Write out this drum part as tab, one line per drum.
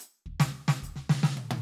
Percussion |x--x--x-----|
Snare      |---o-o-ooo--|
High tom   |----------oo|
Kick       |--g---g-----|